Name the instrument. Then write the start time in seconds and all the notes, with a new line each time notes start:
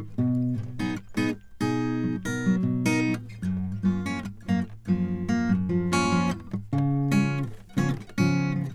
acoustic guitar
0.20 B2 F3
0.56 B2 F3
0.81 F3 B3 D#4 G#4
1.18 B2 F3 B3 D#4 G#4
1.62 B2 F3 B3 D#4 G#4
2.05 F#3
2.26 B2 B3 D#4 A#4
2.48 F#3
2.65 B2
2.87 B3 D#4 A#4
3.02 G#4
3.06 F#3
3.44 F#2
3.75 F3
3.85 F#2 A#3 C#4 F4
4.07 F3 A#3 C#4
4.48 F#2 F3 A#3
4.89 F#2 F3 A#3
5.30 A#3
5.51 F#2
5.71 F3
5.93 A#3 C#4 F4
6.13 F3
6.55 F3
6.74 C#3
7.13 F3 G#3 C#4 F4
7.78 C#3 F3 B3 C#4
8.19 C#3 F3 B3 C#4
8.58 F3